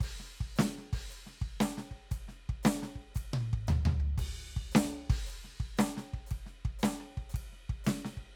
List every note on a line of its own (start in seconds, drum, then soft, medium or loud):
0.01 kick medium
0.01 hi-hat pedal medium
0.01 crash medium
0.19 snare soft
0.41 kick medium
0.56 snare loud
0.56 hi-hat pedal medium
0.56 ride medium
0.78 snare soft
0.93 kick medium
0.93 crash medium
1.10 hi-hat pedal medium
1.10 ride soft
1.26 snare soft
1.42 kick medium
1.60 snare loud
1.60 hi-hat pedal medium
1.60 ride medium
1.77 snare soft
1.91 kick soft
2.11 kick medium
2.11 hi-hat pedal medium
2.11 ride medium
2.28 snare soft
2.49 kick medium
2.63 snare loud
2.63 hi-hat pedal medium
2.63 ride medium
2.82 snare soft
2.96 kick soft
3.15 kick medium
3.15 hi-hat pedal medium
3.15 ride medium
3.34 high tom loud
3.53 kick medium
3.67 floor tom loud
3.67 hi-hat pedal medium
3.85 floor tom loud
4.00 kick soft
4.18 kick medium
4.18 hi-hat pedal medium
4.18 ride medium
4.18 crash medium
4.57 kick medium
4.72 snare loud
4.72 hi-hat pedal medium
5.10 kick medium
5.10 crash medium
5.27 hi-hat pedal medium
5.27 ride soft
5.44 snare soft
5.60 kick medium
5.77 snare loud
5.77 hi-hat pedal medium
5.77 ride medium
5.97 snare medium
6.14 kick soft
6.27 hi-hat pedal medium
6.31 kick medium
6.31 ride medium
6.46 snare soft
6.65 kick medium
6.79 hi-hat pedal medium
6.83 snare loud
6.83 ride medium
7.00 cross-stick soft
7.17 kick soft
7.30 hi-hat pedal medium
7.34 kick medium
7.34 ride medium
7.52 snare soft
7.70 kick medium
7.84 snare loud
7.84 hi-hat pedal medium
7.84 ride medium
8.05 snare medium
8.17 kick soft